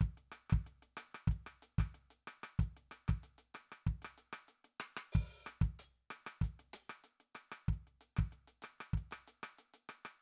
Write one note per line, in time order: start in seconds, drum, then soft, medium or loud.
0.01 kick medium
0.01 closed hi-hat soft
0.17 closed hi-hat soft
0.32 cross-stick medium
0.32 closed hi-hat medium
0.50 kick medium
0.50 cross-stick medium
0.67 closed hi-hat soft
0.83 closed hi-hat soft
0.97 cross-stick medium
0.97 closed hi-hat medium
1.15 cross-stick medium
1.28 kick medium
1.28 closed hi-hat soft
1.47 cross-stick medium
1.47 closed hi-hat soft
1.63 closed hi-hat medium
1.78 kick medium
1.78 cross-stick medium
1.95 closed hi-hat soft
2.11 closed hi-hat medium
2.27 cross-stick medium
2.27 closed hi-hat soft
2.43 cross-stick medium
2.59 kick medium
2.59 closed hi-hat medium
2.77 closed hi-hat soft
2.91 cross-stick medium
2.91 closed hi-hat medium
3.08 kick medium
3.08 cross-stick medium
3.24 closed hi-hat medium
3.38 closed hi-hat medium
3.55 cross-stick medium
3.55 closed hi-hat medium
3.72 cross-stick medium
3.87 kick medium
3.87 closed hi-hat soft
4.02 cross-stick medium
4.02 closed hi-hat soft
4.18 closed hi-hat medium
4.33 cross-stick medium
4.48 closed hi-hat medium
4.64 closed hi-hat soft
4.80 cross-stick medium
4.80 closed hi-hat medium
4.97 cross-stick medium
5.12 open hi-hat medium
5.12 kick medium
5.45 cross-stick medium
5.45 closed hi-hat soft
5.45 hi-hat pedal soft
5.61 kick medium
5.61 closed hi-hat soft
5.79 closed hi-hat medium
6.11 cross-stick medium
6.11 closed hi-hat medium
6.27 cross-stick medium
6.41 kick medium
6.41 closed hi-hat medium
6.59 closed hi-hat soft
6.74 closed hi-hat loud
6.90 cross-stick medium
7.04 closed hi-hat medium
7.20 closed hi-hat soft
7.35 cross-stick medium
7.35 closed hi-hat medium
7.52 cross-stick medium
7.68 kick medium
7.73 closed hi-hat soft
7.87 closed hi-hat soft
8.01 closed hi-hat medium
8.17 kick medium
8.17 cross-stick medium
8.32 closed hi-hat soft
8.48 closed hi-hat medium
8.62 cross-stick medium
8.62 closed hi-hat medium
8.81 cross-stick medium
8.93 kick medium
8.93 closed hi-hat soft
9.11 cross-stick medium
9.11 closed hi-hat medium
9.28 closed hi-hat medium
9.43 cross-stick medium
9.59 closed hi-hat medium
9.74 closed hi-hat medium
9.89 cross-stick medium
9.89 closed hi-hat medium
10.05 cross-stick medium